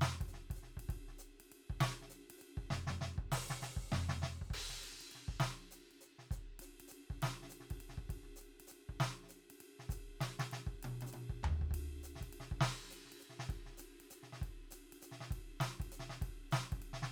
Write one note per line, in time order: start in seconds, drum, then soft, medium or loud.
0.01 snare loud
0.01 hi-hat pedal medium
0.21 kick medium
0.21 ride medium
0.28 hi-hat pedal soft
0.34 snare soft
0.50 kick soft
0.50 ride medium
0.56 hi-hat pedal soft
0.63 snare soft
0.77 kick soft
0.77 ride medium
0.89 kick medium
0.89 ride medium
1.08 snare soft
1.19 hi-hat pedal medium
1.19 ride soft
1.40 ride soft
1.52 ride soft
1.70 kick soft
1.81 snare loud
1.81 ride medium
2.02 snare soft
2.10 hi-hat pedal medium
2.10 ride soft
2.30 ride medium
2.38 hi-hat pedal soft
2.38 ride soft
2.57 kick soft
2.71 snare medium
2.71 mid tom medium
2.87 snare medium
2.87 mid tom medium
3.01 snare medium
3.01 mid tom medium
3.18 kick medium
3.32 open hi-hat loud
3.32 snare medium
3.50 open hi-hat soft
3.50 snare medium
3.62 open hi-hat soft
3.62 snare medium
3.77 kick medium
3.92 snare medium
3.92 mid tom loud
4.09 snare medium
4.09 mid tom medium
4.22 snare medium
4.22 mid tom medium
4.42 kick soft
4.50 kick medium
4.50 crash loud
4.70 snare soft
4.81 hi-hat pedal soft
4.81 ride soft
4.92 snare soft
5.01 ride soft
5.08 hi-hat pedal soft
5.08 ride soft
5.15 snare soft
5.28 kick medium
5.40 snare medium
5.40 ride medium
5.71 hi-hat pedal medium
5.71 ride soft
5.91 ride soft
6.01 hi-hat pedal medium
6.07 ride soft
6.19 snare soft
6.31 kick medium
6.31 hi-hat pedal medium
6.59 hi-hat pedal medium
6.59 ride medium
6.80 ride medium
6.88 hi-hat pedal medium
6.88 ride medium
7.10 kick soft
7.22 snare medium
7.22 ride medium
7.43 snare soft
7.50 hi-hat pedal medium
7.50 ride medium
7.60 snare soft
7.70 kick soft
7.70 ride soft
7.89 snare soft
7.98 kick soft
8.10 kick soft
8.10 ride medium
8.23 snare soft
8.36 hi-hat pedal medium
8.42 ride soft
8.54 snare soft
8.60 ride medium
8.67 hi-hat pedal medium
8.72 ride soft
8.89 kick soft
9.00 snare medium
9.00 ride medium
9.23 snare soft
9.29 hi-hat pedal medium
9.29 ride soft
9.50 ride medium
9.61 ride medium
9.79 snare soft
9.89 kick medium
9.89 hi-hat pedal medium
9.89 ride medium
10.21 snare medium
10.21 ride medium
10.39 snare medium
10.39 ride soft
10.52 snare medium
10.52 ride soft
10.67 kick medium
10.83 high tom medium
10.83 ride medium
11.01 high tom medium
11.01 ride medium
11.07 hi-hat pedal medium
11.13 high tom medium
11.13 ride medium
11.30 kick soft
11.43 floor tom loud
11.43 mid tom medium
11.62 kick soft
11.71 kick soft
11.71 ride medium
12.03 hi-hat pedal medium
12.03 ride soft
12.16 snare soft
12.21 kick soft
12.21 ride medium
12.33 ride medium
12.40 snare soft
12.52 kick medium
12.61 snare loud
12.61 crash medium
12.91 hi-hat pedal medium
12.91 ride soft
13.06 snare soft
13.12 ride medium
13.19 hi-hat pedal soft
13.19 ride soft
13.30 snare soft
13.39 snare medium
13.49 kick medium
13.49 ride soft
13.66 snare soft
13.73 snare soft
13.78 hi-hat pedal medium
13.78 ride medium
14.00 ride soft
14.10 hi-hat pedal medium
14.10 ride medium
14.23 snare soft
14.33 snare soft
14.42 kick medium
14.42 ride soft
14.65 snare soft
14.71 hi-hat pedal medium
14.71 ride medium
14.93 ride medium
15.02 hi-hat pedal medium
15.02 ride soft
15.12 snare soft
15.21 snare soft
15.31 kick medium
15.31 ride medium
15.60 snare medium
15.60 ride medium
15.80 kick medium
15.80 ride medium
15.92 hi-hat pedal medium
15.92 ride soft
16.00 snare soft
16.10 snare medium
16.22 kick medium
16.22 ride medium
16.51 snare loud
16.51 hi-hat pedal medium
16.51 ride soft
16.72 kick medium
16.72 ride soft
16.82 ride soft
16.93 snare medium
17.02 snare medium